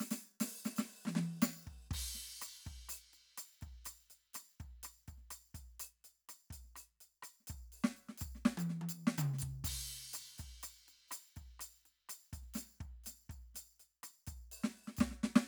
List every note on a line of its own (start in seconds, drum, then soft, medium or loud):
0.01 snare medium
0.01 percussion medium
0.12 snare medium
0.12 percussion medium
0.41 snare medium
0.41 percussion medium
0.66 snare medium
0.66 percussion medium
0.77 snare medium
0.77 percussion medium
1.06 snare medium
1.06 high tom medium
1.16 snare medium
1.16 high tom medium
1.43 snare medium
1.43 percussion loud
1.68 kick soft
1.92 kick medium
1.92 crash medium
2.04 kick soft
2.16 snare soft
2.42 cross-stick soft
2.42 snare soft
2.42 percussion medium
2.67 kick soft
2.67 percussion soft
2.90 cross-stick soft
2.90 percussion medium
2.92 percussion soft
3.14 percussion soft
3.39 cross-stick soft
3.39 percussion medium
3.62 kick soft
3.62 percussion soft
3.86 cross-stick soft
3.86 percussion soft
3.86 percussion medium
4.11 percussion soft
4.34 cross-stick soft
4.34 snare soft
4.34 percussion soft
4.34 percussion medium
4.61 kick soft
4.61 percussion soft
4.84 cross-stick soft
4.84 percussion medium
5.09 kick soft
5.09 percussion soft
5.18 snare soft
5.32 cross-stick soft
5.32 percussion medium
5.55 kick soft
5.55 percussion soft
5.81 cross-stick soft
5.81 percussion medium
6.05 percussion soft
6.29 cross-stick soft
6.29 snare soft
6.29 percussion medium
6.51 kick soft
6.51 percussion soft
6.65 snare soft
6.76 cross-stick soft
6.76 snare soft
6.76 percussion medium
7.02 percussion soft
7.23 cross-stick soft
7.23 percussion medium
7.41 snare soft
7.48 kick soft
7.48 percussion medium
7.73 percussion soft
7.85 snare medium
7.97 percussion soft
8.10 snare soft
8.19 percussion medium
8.22 kick soft
8.22 percussion medium
8.36 snare soft
8.46 snare loud
8.58 high tom loud
8.58 percussion medium
8.70 snare soft
8.82 high tom medium
8.90 percussion medium
9.08 snare medium
9.19 mid tom loud
9.19 percussion medium
9.35 snare soft
9.40 kick soft
9.40 percussion medium
9.40 floor tom medium
9.65 kick soft
9.65 percussion loud
9.65 crash medium
9.71 kick soft
9.74 kick soft
10.14 cross-stick soft
10.14 percussion medium
10.39 kick soft
10.39 percussion soft
10.62 percussion soft
10.64 cross-stick soft
10.64 percussion medium
10.89 percussion soft
11.09 cross-stick soft
11.09 percussion soft
11.13 percussion medium
11.37 kick soft
11.37 percussion soft
11.60 cross-stick soft
11.60 snare soft
11.60 percussion medium
11.86 percussion soft
12.10 cross-stick soft
12.10 percussion medium
12.34 kick soft
12.34 percussion soft
12.43 snare soft
12.55 snare soft
12.55 percussion medium
12.55 percussion soft
12.58 percussion medium
12.81 kick soft
12.81 snare soft
12.81 percussion soft
13.05 percussion soft
13.07 snare soft
13.07 percussion medium
13.30 kick soft
13.30 percussion soft
13.55 snare soft
13.55 percussion soft
13.55 percussion medium
13.81 percussion soft
14.04 cross-stick soft
14.04 snare soft
14.04 percussion medium
14.28 kick soft
14.28 percussion medium
14.53 percussion medium
14.65 snare medium
14.88 snare soft
14.98 kick soft
14.98 snare medium
14.98 percussion medium
15.05 kick soft
15.08 kick soft
15.08 snare soft
15.24 snare medium
15.37 snare loud